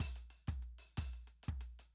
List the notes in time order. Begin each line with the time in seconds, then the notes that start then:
0.00 kick, percussion
0.16 percussion
0.30 percussion
0.47 kick, percussion
0.62 percussion
0.78 percussion
0.97 kick, percussion
1.13 percussion
1.27 percussion
1.43 percussion
1.48 kick
1.61 percussion
1.79 percussion